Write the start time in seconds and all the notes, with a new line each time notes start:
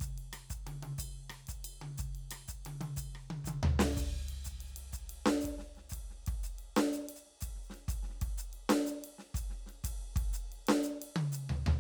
0.01 kick, hi-hat pedal, ride
0.18 ride
0.34 cross-stick, ride bell
0.51 kick, hi-hat pedal
0.67 high tom, ride
0.83 high tom, ride
0.99 kick, hi-hat pedal, ride bell
1.30 cross-stick, ride
1.48 kick, hi-hat pedal, ride
1.65 ride bell
1.71 hi-hat pedal
1.82 high tom
1.98 kick, hi-hat pedal, ride
2.16 ride
2.31 cross-stick, ride bell
2.48 kick, hi-hat pedal
2.66 high tom, ride
2.81 high tom, ride
2.97 kick, hi-hat pedal, ride bell
3.16 cross-stick
3.31 high tom
3.45 kick, hi-hat pedal, high tom
3.64 floor tom
3.80 snare
3.93 crash
3.97 kick, hi-hat pedal
4.29 ride
4.45 kick, hi-hat pedal
4.61 ride
4.67 hi-hat pedal
4.77 ride
4.93 kick, hi-hat pedal
5.10 ride
5.26 snare
5.41 kick, hi-hat pedal
5.46 ride
5.59 snare
5.76 snare, ride
5.90 kick, hi-hat pedal
5.94 ride
6.11 snare
6.27 kick, ride
6.44 hi-hat pedal
6.59 ride
6.77 snare, ride
6.93 hi-hat pedal
7.09 ride
7.16 hi-hat pedal
7.27 snare
7.41 kick, hi-hat pedal, ride
7.56 snare
7.64 hi-hat pedal
7.70 snare
7.75 ride
7.89 kick, hi-hat pedal, ride
8.03 snare
8.10 snare
8.16 snare
8.22 kick, ride
8.38 hi-hat pedal
8.54 ride
8.70 snare, ride
8.87 hi-hat pedal
9.05 ride
9.19 snare
9.35 kick, hi-hat pedal, ride
9.51 snare
9.67 snare, ride
9.84 kick, hi-hat pedal, ride
10.01 snare
10.16 kick, ride
10.32 snare, hi-hat pedal
10.53 ride
10.68 snare, ride
10.84 hi-hat pedal
11.02 ride
11.17 high tom
11.33 hi-hat pedal, ride
11.50 floor tom
11.67 floor tom